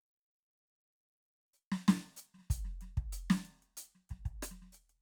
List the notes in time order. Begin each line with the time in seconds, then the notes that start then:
1.54 hi-hat pedal
1.72 snare
1.88 snare
2.17 hi-hat pedal
2.34 snare
2.38 snare
2.42 snare
2.50 closed hi-hat, kick
2.65 snare
2.81 snare, closed hi-hat
2.97 kick, closed hi-hat
3.13 closed hi-hat
3.30 snare
3.45 closed hi-hat
3.62 closed hi-hat
3.77 closed hi-hat
3.95 snare
4.09 kick, snare, closed hi-hat
4.25 kick, closed hi-hat
4.43 open hi-hat, cross-stick
4.51 snare
4.62 snare
4.65 snare
4.72 closed hi-hat, hi-hat pedal
4.90 closed hi-hat